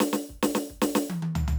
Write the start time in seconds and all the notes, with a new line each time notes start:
0.00 snare
0.13 snare
0.29 kick
0.43 snare
0.55 snare
0.70 kick
0.82 snare
0.95 snare
1.10 high tom
1.22 high tom
1.35 floor tom
1.48 floor tom